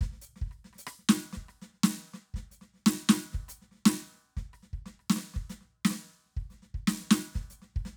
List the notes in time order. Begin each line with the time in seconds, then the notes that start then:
0.01 kick, cross-stick, snare
0.12 snare
0.22 hi-hat pedal
0.36 snare
0.42 kick
0.47 snare
0.52 cross-stick
0.65 snare
0.73 cross-stick, snare
0.79 hi-hat pedal
0.87 cross-stick
0.99 snare
1.09 snare
1.33 snare
1.38 kick
1.49 cross-stick, snare
1.62 snare
1.68 snare
1.74 snare
1.84 snare
1.99 snare
2.14 snare
2.34 kick, snare
2.51 snare, hi-hat pedal, crash
2.62 snare
2.74 snare
2.76 snare
2.87 snare
2.99 snare
3.10 snare
3.14 cross-stick
3.21 snare
3.33 kick, snare
3.37 snare
3.48 cross-stick, snare, hi-hat pedal
3.62 snare
3.72 snare
3.75 snare
3.86 cross-stick, snare
4.00 cross-stick, snare
4.14 snare
4.24 snare
4.37 kick, snare
4.54 cross-stick
4.63 snare
4.74 kick
4.86 snare
5.00 cross-stick
5.10 snare
5.17 snare
5.34 kick, snare
5.50 snare, hi-hat pedal
5.61 snare
5.85 snare
5.91 snare
6.00 snare
6.26 snare
6.34 snare
6.37 kick, snare
6.50 snare, hi-hat pedal
6.63 snare
6.75 kick, snare
6.88 snare
6.99 snare
7.11 snare
7.35 kick, snare
7.41 snare
7.51 snare, hi-hat pedal
7.62 snare
7.74 kick, snare
7.86 snare